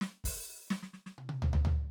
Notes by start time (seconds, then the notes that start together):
0.01 snare
0.24 open hi-hat, kick
0.67 snare, hi-hat pedal
0.83 snare
0.93 snare
1.06 snare
1.18 high tom
1.29 high tom
1.42 floor tom
1.53 floor tom
1.65 floor tom